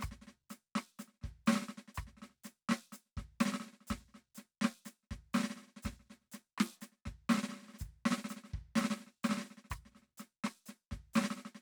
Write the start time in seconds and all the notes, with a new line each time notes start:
0.01 cross-stick, snare, hi-hat pedal
0.05 kick
0.10 kick, snare
0.23 snare
0.28 snare
0.51 snare, hi-hat pedal
0.77 cross-stick, snare
1.00 snare, hi-hat pedal
1.09 snare
1.15 snare
1.23 snare
1.24 kick, snare
1.48 snare, hi-hat pedal
1.51 snare
1.54 snare
1.57 snare
1.60 snare
1.63 snare
1.70 snare
1.79 snare
1.89 snare
1.96 kick, cross-stick, hi-hat pedal
2.08 snare
2.18 snare
2.23 snare
2.31 snare
2.45 snare, hi-hat pedal
2.70 snare
2.72 snare
2.93 snare, hi-hat pedal
3.07 snare
3.18 kick, snare
3.41 snare, hi-hat pedal
3.47 snare
3.49 snare
3.53 snare
3.55 snare
3.61 snare
3.67 snare
3.74 snare
3.82 snare
3.88 snare, hi-hat pedal
3.91 kick, snare
4.01 snare
4.10 snare
4.15 snare
4.36 snare, hi-hat pedal
4.63 snare
4.66 snare
4.86 snare, hi-hat pedal
5.04 snare
5.12 kick, snare
5.35 snare, hi-hat pedal
5.38 snare
5.41 snare
5.45 snare
5.48 snare
5.51 snare
5.57 snare
5.59 snare
5.63 snare
5.68 snare
5.78 snare
5.84 kick, snare, hi-hat pedal
5.94 snare
6.01 snare
6.07 snare
6.11 snare
6.22 snare
6.25 snare
6.33 snare, hi-hat pedal
6.59 cross-stick, snare
6.82 snare, hi-hat pedal
6.93 snare
6.98 snare
7.07 kick, snare
7.31 snare, hi-hat pedal
7.32 snare
7.35 snare
7.39 snare
7.44 snare
7.50 snare
7.53 snare
7.57 snare
7.60 snare
7.64 snare
7.67 snare
7.75 snare
7.80 kick, snare, hi-hat pedal
8.07 snare
8.12 snare
8.14 snare
8.19 snare
8.26 snare
8.30 snare, hi-hat pedal
8.38 snare
8.45 snare
8.50 snare
8.55 kick, snare
8.77 snare, hi-hat pedal
8.79 snare
8.82 snare
8.85 snare
8.91 snare
8.97 snare
9.01 snare
9.08 snare
9.25 snare, hi-hat pedal
9.30 snare
9.32 snare
9.35 snare
9.38 snare
9.41 snare
9.45 snare
9.52 snare
9.58 snare
9.66 snare
9.71 kick, cross-stick, snare, hi-hat pedal
9.87 snare
9.93 snare
9.96 snare
10.03 snare
10.08 snare
10.19 snare, hi-hat pedal
10.45 cross-stick, snare
10.67 snare, hi-hat pedal
10.92 kick, snare
11.15 snare, hi-hat pedal
11.19 snare
11.22 snare
11.25 snare
11.32 snare
11.37 snare
11.39 snare
11.46 snare
11.56 snare